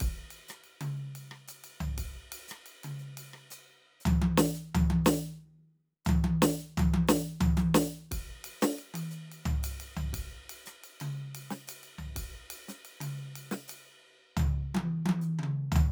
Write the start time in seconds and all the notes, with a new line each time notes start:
0.01 kick, ride
0.31 ride
0.49 cross-stick, hi-hat pedal
0.64 ride
0.81 mid tom, ride
1.16 ride
1.32 cross-stick
1.48 hi-hat pedal, ride
1.64 ride
1.81 floor tom
1.98 kick, ride
2.33 ride
2.49 cross-stick, hi-hat pedal
2.66 ride
2.84 mid tom, ride
2.99 hi-hat pedal
3.18 ride
3.34 cross-stick
3.51 hi-hat pedal, ride bell
4.01 hi-hat pedal
4.06 floor tom, high tom
4.22 high tom
4.38 snare
4.55 hi-hat pedal
4.75 floor tom, high tom
4.90 high tom
5.05 snare, hi-hat pedal
6.05 floor tom, hi-hat pedal
6.09 high tom
6.24 high tom
6.42 snare
6.59 hi-hat pedal
6.78 floor tom, high tom
6.94 high tom
7.08 snare, hi-hat pedal
7.41 floor tom, high tom
7.57 hi-hat pedal, high tom
7.75 snare
8.12 kick, ride
8.45 ride
8.62 snare, hi-hat pedal
8.79 ride
8.94 high tom, ride
9.11 hi-hat pedal
9.32 ride
9.46 floor tom
9.63 hi-hat pedal, ride
9.81 ride
9.97 floor tom
10.14 kick, ride
10.50 ride
10.66 cross-stick, hi-hat pedal
10.84 ride
11.01 mid tom, ride bell
11.15 hi-hat pedal
11.35 ride
11.51 snare
11.68 hi-hat pedal, ride
11.84 ride
11.99 floor tom
12.16 kick, ride
12.51 ride
12.69 snare, hi-hat pedal
12.85 ride
13.01 mid tom, ride
13.36 ride
13.52 snare
13.68 hi-hat pedal, ride
14.37 floor tom, mid tom
14.75 high tom
14.77 high tom
15.06 high tom
15.09 high tom
15.22 hi-hat pedal
15.39 mid tom
15.44 mid tom
15.72 floor tom
15.76 floor tom